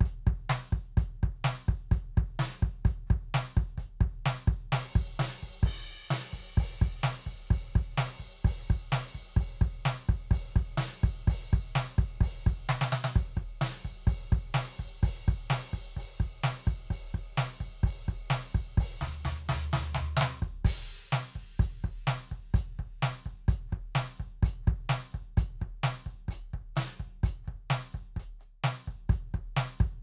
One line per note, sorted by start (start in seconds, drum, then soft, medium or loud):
0.01 kick loud
0.05 closed hi-hat medium
0.27 kick loud
0.50 closed hi-hat medium
0.50 snare loud
0.73 kick loud
0.97 closed hi-hat medium
0.97 kick loud
1.23 kick loud
1.45 closed hi-hat medium
1.45 snare loud
1.52 snare soft
1.69 kick loud
1.92 closed hi-hat medium
1.92 kick loud
2.15 kick loud
2.15 snare soft
2.39 closed hi-hat loud
2.39 snare loud
2.63 kick loud
2.85 closed hi-hat medium
2.85 kick loud
3.07 kick loud
3.07 snare soft
3.34 closed hi-hat loud
3.34 snare loud
3.57 kick loud
3.78 closed hi-hat medium
3.78 kick medium
4.01 kick loud
4.26 closed hi-hat medium
4.26 snare loud
4.40 snare soft
4.48 kick loud
4.72 open hi-hat loud
4.72 snare loud
4.85 snare soft
4.96 kick loud
5.20 open hi-hat loud
5.20 snare loud
5.28 snare soft
5.43 kick medium
5.63 kick loud
5.63 crash loud
6.11 open hi-hat loud
6.11 snare loud
6.33 kick medium
6.58 open hi-hat loud
6.58 kick loud
6.82 kick loud
7.04 open hi-hat loud
7.04 snare loud
7.27 kick medium
7.51 open hi-hat medium
7.51 kick loud
7.76 kick loud
7.98 open hi-hat loud
7.98 snare loud
8.20 kick soft
8.45 open hi-hat loud
8.45 kick loud
8.60 snare soft
8.70 kick loud
8.92 open hi-hat loud
8.92 snare loud
9.15 kick medium
9.37 open hi-hat medium
9.37 kick loud
9.61 kick loud
9.85 open hi-hat medium
9.85 snare loud
10.09 kick loud
10.31 open hi-hat medium
10.31 kick loud
10.56 kick loud
10.78 open hi-hat loud
10.78 snare loud
11.04 kick loud
11.28 open hi-hat loud
11.28 kick loud
11.53 kick loud
11.75 open hi-hat medium
11.75 snare loud
11.98 kick loud
12.21 open hi-hat loud
12.21 kick loud
12.39 snare soft
12.47 kick loud
12.69 snare loud
12.81 snare loud
12.92 snare loud
13.04 snare loud
13.16 open hi-hat medium
13.16 kick loud
13.37 kick loud
13.61 open hi-hat loud
13.61 snare loud
13.77 snare soft
13.85 kick medium
14.07 open hi-hat medium
14.07 kick loud
14.32 kick loud
14.54 open hi-hat loud
14.54 snare loud
14.79 kick medium
15.03 open hi-hat loud
15.03 kick loud
15.28 kick loud
15.50 open hi-hat loud
15.50 snare loud
15.73 kick medium
15.97 open hi-hat medium
15.97 kick medium
16.07 snare soft
16.20 kick loud
16.44 open hi-hat medium
16.44 snare loud
16.67 kick loud
16.91 open hi-hat medium
16.91 kick medium
17.14 kick medium
17.33 kick soft
17.38 open hi-hat medium
17.38 snare loud
17.61 kick medium
17.84 open hi-hat medium
17.84 kick loud
18.08 kick loud
18.30 open hi-hat medium
18.30 snare loud
18.55 kick loud
18.78 open hi-hat loud
18.78 kick loud
19.01 kick soft
19.01 snare medium
19.01 floor tom loud
19.25 snare loud
19.25 floor tom loud
19.49 snare loud
19.49 floor tom loud
19.73 snare loud
19.73 floor tom loud
19.95 snare medium
19.95 floor tom loud
20.17 snare loud
20.17 hi-hat pedal soft
20.21 snare loud
20.42 kick loud
20.65 open hi-hat loud
20.65 kick loud
20.65 crash loud
21.08 hi-hat pedal soft
21.13 closed hi-hat loud
21.13 snare loud
21.36 kick medium
21.36 closed hi-hat soft
21.60 closed hi-hat loud
21.60 kick loud
21.83 kick medium
21.83 snare soft
21.83 closed hi-hat soft
22.07 closed hi-hat medium
22.07 snare loud
22.21 snare soft
22.32 kick medium
22.32 closed hi-hat soft
22.54 closed hi-hat loud
22.54 kick loud
22.79 kick medium
22.79 closed hi-hat soft
23.03 closed hi-hat medium
23.03 snare loud
23.26 kick medium
23.26 closed hi-hat soft
23.48 closed hi-hat loud
23.48 kick loud
23.69 snare soft
23.69 closed hi-hat soft
23.73 kick medium
23.95 closed hi-hat loud
23.95 snare loud
24.04 snare soft
24.12 snare soft
24.20 kick medium
24.20 closed hi-hat soft
24.43 closed hi-hat loud
24.43 kick loud
24.63 snare soft
24.67 kick loud
24.67 closed hi-hat soft
24.90 closed hi-hat loud
24.90 snare loud
25.13 kick medium
25.13 closed hi-hat soft
25.37 closed hi-hat loud
25.37 kick loud
25.61 kick medium
25.61 closed hi-hat soft
25.84 closed hi-hat loud
25.84 snare loud
26.06 kick medium
26.06 closed hi-hat soft
26.29 closed hi-hat loud
26.29 kick medium
26.54 kick medium
26.54 closed hi-hat soft
26.76 closed hi-hat loud
26.76 snare loud
27.00 kick medium
27.00 closed hi-hat soft
27.24 closed hi-hat loud
27.24 kick loud
27.44 kick medium
27.44 snare soft
27.44 closed hi-hat soft
27.70 closed hi-hat loud
27.70 snare loud
27.94 kick medium
27.94 closed hi-hat soft
28.17 closed hi-hat medium
28.17 kick medium
28.39 snare soft
28.39 closed hi-hat medium
28.64 closed hi-hat loud
28.64 snare loud
28.87 kick medium
28.87 closed hi-hat soft
29.10 closed hi-hat medium
29.10 kick loud
29.34 kick medium
29.34 closed hi-hat medium
29.57 closed hi-hat loud
29.57 snare loud
29.80 closed hi-hat medium
29.80 kick loud